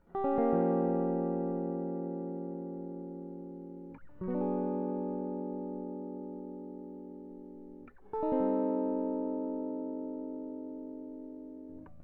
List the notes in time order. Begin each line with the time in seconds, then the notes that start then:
0.17 G4
0.26 C#4
0.39 A#3
0.55 F3
4.22 F#3
4.30 B3
4.36 D4
4.43 G#4
8.15 A4
8.24 D#4
8.32 C4
8.44 G3